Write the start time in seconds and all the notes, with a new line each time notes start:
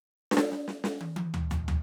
0.31 snare
0.37 snare
0.50 snare, hi-hat pedal
0.68 snare
0.84 snare
0.98 hi-hat pedal, high tom
1.16 high tom
1.34 floor tom
1.50 floor tom, hi-hat pedal
1.68 floor tom